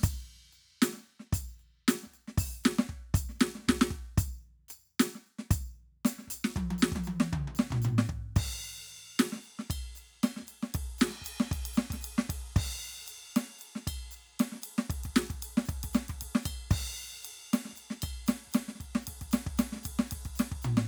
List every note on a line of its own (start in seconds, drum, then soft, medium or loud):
0.01 kick loud
0.01 snare soft
0.01 percussion loud
0.53 percussion soft
0.83 snare loud
0.83 percussion loud
0.94 snare soft
0.98 snare soft
1.03 snare soft
1.20 snare soft
1.33 kick loud
1.33 percussion loud
1.60 percussion soft
1.89 snare loud
1.89 percussion loud
2.04 kick soft
2.04 snare soft
2.09 snare soft
2.14 percussion soft
2.29 snare soft
2.38 kick loud
2.38 snare soft
2.38 percussion loud
2.65 snare loud
2.65 percussion medium
2.79 snare loud
2.90 kick medium
3.15 kick loud
3.15 percussion loud
3.30 snare soft
3.36 snare soft
3.41 snare loud
3.41 percussion medium
3.56 snare soft
3.59 snare soft
3.62 snare soft
3.64 snare soft
3.69 kick medium
3.69 snare loud
3.82 snare loud
3.91 kick medium
4.18 kick loud
4.18 percussion loud
4.69 percussion medium
4.71 percussion medium
5.00 snare loud
5.00 percussion loud
5.16 snare soft
5.27 percussion soft
5.39 snare medium
5.52 kick loud
5.52 percussion loud
6.06 snare loud
6.06 percussion loud
6.19 snare soft
6.23 snare soft
6.27 kick soft
6.27 snare soft
6.27 percussion loud
6.45 snare medium
6.57 kick medium
6.57 high tom loud
6.71 high tom loud
6.79 percussion medium
6.83 snare loud
6.93 kick medium
6.93 snare medium
6.97 high tom loud
7.05 high tom loud
7.05 percussion medium
7.21 snare loud
7.34 kick medium
7.34 mid tom loud
7.48 mid tom loud
7.56 percussion medium
7.60 snare loud
7.71 kick medium
7.71 floor tom loud
7.76 snare soft
7.83 floor tom loud
7.83 percussion medium
7.99 snare loud
8.07 kick medium
8.07 percussion soft
8.37 kick loud
8.37 crash loud
8.37 percussion medium
8.88 percussion soft
9.20 snare loud
9.20 ride loud
9.33 snare medium
9.37 snare medium
9.44 ride soft
9.44 percussion soft
9.60 snare medium
9.71 kick medium
9.71 ride bell loud
9.96 ride medium
9.96 percussion medium
10.24 snare loud
10.24 ride bell loud
10.37 snare medium
10.40 kick soft
10.40 snare soft
10.48 ride medium
10.48 percussion medium
10.64 snare medium
10.75 kick medium
10.75 ride loud
10.99 snare loud
10.99 percussion medium
10.99 ride medium
11.11 snare soft
11.14 snare soft
11.17 snare soft
11.22 kick soft
11.22 snare soft
11.22 percussion medium
11.27 ride loud
11.41 snare loud
11.52 kick loud
11.52 ride loud
11.66 ride loud
11.74 snare loud
11.74 percussion medium
11.91 kick medium
11.91 snare medium
11.91 ride loud
12.02 ride loud
12.02 percussion medium
12.09 kick soft
12.19 snare loud
12.30 kick medium
12.30 ride loud
12.57 kick loud
12.57 crash loud
13.07 ride medium
13.07 percussion medium
13.37 snare loud
13.37 ride loud
13.59 ride medium
13.59 percussion soft
13.76 snare medium
13.88 kick medium
13.88 ride bell loud
14.12 ride soft
14.12 percussion medium
14.40 snare loud
14.40 ride loud
14.53 snare soft
14.56 snare soft
14.63 ride loud
14.63 percussion medium
14.79 snare loud
14.91 kick medium
14.91 ride loud
15.05 kick medium
15.05 ride medium
15.17 snare loud
15.17 percussion medium
15.31 kick medium
15.31 ride medium
15.43 ride loud
15.43 percussion medium
15.50 kick soft
15.58 snare loud
15.66 kick medium
15.66 ride medium
15.66 percussion medium
15.84 kick medium
15.84 ride loud
15.94 snare loud
15.94 percussion medium
16.09 kick medium
16.09 cross-stick medium
16.09 ride medium
16.21 kick soft
16.21 ride loud
16.21 percussion soft
16.36 snare loud
16.44 kick medium
16.44 ride bell loud
16.44 percussion soft
16.71 kick loud
16.71 crash loud
16.71 percussion medium
17.23 ride loud
17.23 percussion soft
17.54 snare loud
17.54 ride loud
17.66 snare soft
17.70 kick soft
17.70 snare soft
17.77 ride medium
17.77 percussion medium
17.91 snare medium
18.03 kick medium
18.03 ride bell loud
18.27 snare loud
18.27 ride loud
18.27 percussion medium
18.48 kick soft
18.53 snare loud
18.53 ride loud
18.53 percussion medium
18.69 snare medium
18.76 snare soft
18.81 kick soft
18.81 ride medium
18.96 snare loud
19.03 percussion soft
19.08 kick soft
19.08 ride loud
19.22 kick medium
19.22 ride medium
19.32 snare loud
19.32 ride loud
19.32 percussion medium
19.47 kick medium
19.59 snare loud
19.59 ride loud
19.59 percussion medium
19.73 snare medium
19.77 snare medium
19.82 snare soft
19.82 percussion medium
19.86 kick medium
19.86 ride loud
20.00 snare loud
20.07 percussion soft
20.12 kick medium
20.12 ride loud
20.26 kick medium
20.26 ride medium
20.36 ride loud
20.36 percussion medium
20.40 snare loud
20.52 kick medium
20.63 floor tom loud
20.63 percussion medium
20.78 snare loud